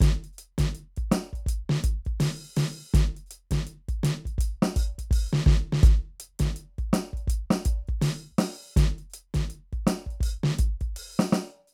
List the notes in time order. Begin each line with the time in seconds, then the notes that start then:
0.01 closed hi-hat, kick, snare, hi-hat pedal
0.24 closed hi-hat
0.33 hi-hat pedal
0.39 closed hi-hat
0.59 kick, snare, closed hi-hat
0.75 closed hi-hat
0.97 kick, closed hi-hat
1.12 closed hi-hat, snare
1.33 kick, closed hi-hat
1.47 closed hi-hat, kick
1.70 snare
1.84 closed hi-hat, kick
2.06 kick, closed hi-hat
2.21 open hi-hat, snare
2.57 open hi-hat, snare
2.94 closed hi-hat, kick, snare, hi-hat pedal
3.17 closed hi-hat
3.27 hi-hat pedal
3.31 closed hi-hat
3.51 kick, snare, closed hi-hat
3.67 closed hi-hat
3.89 kick, closed hi-hat
4.04 closed hi-hat, snare
4.26 kick, closed hi-hat
4.39 open hi-hat, kick
4.63 snare
4.77 open hi-hat, kick
4.99 kick, closed hi-hat
5.11 open hi-hat, kick, hi-hat pedal
5.33 snare
5.47 kick, snare
5.73 snare
5.84 open hi-hat, kick, snare, hi-hat pedal
6.20 closed hi-hat
6.40 kick, snare, closed hi-hat
6.46 snare
6.57 closed hi-hat
6.79 kick, closed hi-hat
6.94 closed hi-hat, snare
7.14 kick, closed hi-hat
7.28 closed hi-hat, kick
7.51 snare
7.66 closed hi-hat, kick
7.88 kick, closed hi-hat
8.02 open hi-hat, snare, hi-hat pedal
8.32 kick
8.39 open hi-hat, snare
8.74 closed hi-hat, kick, snare, hi-hat pedal
8.99 closed hi-hat
9.11 closed hi-hat, hi-hat pedal
9.35 kick, snare, closed hi-hat
9.50 closed hi-hat
9.73 kick, closed hi-hat
9.87 closed hi-hat, snare
10.07 kick
10.11 closed hi-hat
10.21 open hi-hat, kick
10.27 hi-hat pedal
10.44 snare
10.52 snare
10.59 closed hi-hat, kick
10.81 kick, closed hi-hat
10.97 open hi-hat
11.20 snare
11.33 snare
11.68 hi-hat pedal